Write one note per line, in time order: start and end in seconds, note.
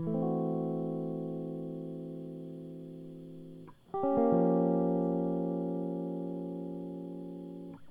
0.00 3.61 E3
0.07 3.40 A3
0.14 3.61 C4
0.23 2.39 F#4
3.95 7.57 G4
4.04 7.82 C#4
4.17 7.58 A#3
4.33 7.82 F3